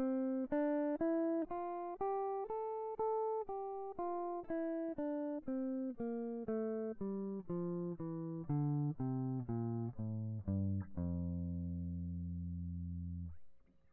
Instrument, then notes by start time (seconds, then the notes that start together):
electric guitar
0.00 C4
0.53 D4
1.01 E4
1.52 F4
2.01 G4
2.50 A4
3.00 A4
3.49 G4
3.99 F4
4.51 E4
4.99 D4
5.49 C4
6.01 A#3
6.49 A3
7.02 G3
7.51 F3
8.01 E3
8.51 D3
9.02 C3
9.51 A#2
10.02 A2
10.50 G2
11.00 F2